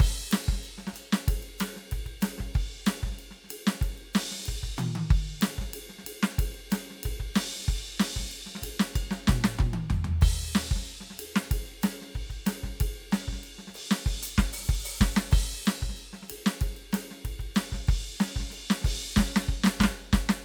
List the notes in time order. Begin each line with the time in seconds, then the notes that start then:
0.01 kick, crash
0.32 snare, hi-hat pedal, ride
0.49 kick, snare
0.64 hi-hat pedal, ride
0.79 snare
0.88 snare
0.91 kick, snare, hi-hat pedal
0.97 ride bell
1.14 snare
1.29 kick, ride
1.44 ride
1.59 snare, hi-hat pedal, ride
1.77 snare
1.92 kick, ride
2.07 kick, ride
2.22 snare, hi-hat pedal, ride
2.39 kick, snare
2.56 kick, ride
2.87 snare, hi-hat pedal, ride
3.04 kick, snare
3.13 snare
3.20 ride
3.32 snare
3.45 kick, snare
3.47 snare, hi-hat pedal
3.52 ride
3.68 snare
3.76 snare
3.82 kick, ride
3.99 ride
4.14 snare, hi-hat pedal, ride
4.32 snare
4.40 snare
4.45 snare, ride
4.49 kick, snare
4.64 kick
4.78 hi-hat pedal, mid tom, high tom
4.96 high tom
5.11 kick, ride
5.42 snare, hi-hat pedal, ride
5.59 kick, snare
5.75 ride
5.90 snare
5.99 snare
6.05 kick, hi-hat pedal, ride
6.24 snare
6.32 snare
6.39 kick, ride
6.55 ride
6.71 snare, hi-hat pedal, ride
6.91 snare
7.04 kick, ride
7.21 kick
7.36 snare, hi-hat pedal, ride
7.69 kick, ride
8.01 snare, hi-hat pedal, ride
8.17 kick, snare
8.32 ride
8.47 snare
8.56 snare
8.59 snare
8.63 kick, hi-hat pedal, ride
8.81 snare
8.96 kick, ride bell
9.12 snare
9.28 kick, snare, hi-hat pedal, mid tom
9.45 snare
9.60 kick, hi-hat pedal, mid tom
9.74 high tom
9.91 kick, floor tom, hi-hat pedal
10.05 floor tom
10.20 kick, crash
10.23 kick
10.55 snare, hi-hat pedal, ride
10.72 kick
10.76 snare
10.87 ride
11.01 snare
11.11 snare
11.18 kick, hi-hat pedal, ride
11.37 snare
11.52 kick, ride
11.67 ride
11.82 snare, hi-hat pedal, ride
12.02 snare
12.16 kick, ride
12.31 kick, ride
12.47 snare, hi-hat pedal, ride
12.64 kick, snare
12.81 kick, ride
13.13 snare, hi-hat pedal, ride
13.29 kick
13.33 snare
13.44 ride
13.59 snare
13.68 kick, snare
13.75 hi-hat pedal, ride
13.92 snare
14.07 kick, ride
14.24 closed hi-hat
14.39 kick, snare
14.54 open hi-hat
14.69 kick, ride
14.86 open hi-hat
15.02 kick, snare
15.17 snare
15.32 kick, crash
15.67 snare, hi-hat pedal, ride
15.83 kick
15.90 snare
15.97 hi-hat pedal, ride
16.14 snare
16.23 snare
16.29 kick, hi-hat pedal, ride
16.47 snare
16.62 kick, ride
16.78 ride
16.93 snare, hi-hat pedal, ride
17.12 snare
17.26 kick, ride
17.40 kick, ride
17.55 snare, hi-hat pedal, ride
17.73 kick, snare
17.89 kick, ride
18.21 snare, hi-hat pedal, ride
18.37 kick, snare
18.51 snare, hi-hat pedal, ride
18.71 snare
18.82 kick, snare, ride
19.17 kick, snare, hi-hat pedal
19.20 snare
19.37 snare
19.49 kick
19.65 snare
19.67 snare
19.81 kick, snare
19.85 snare
20.14 kick, snare
20.30 snare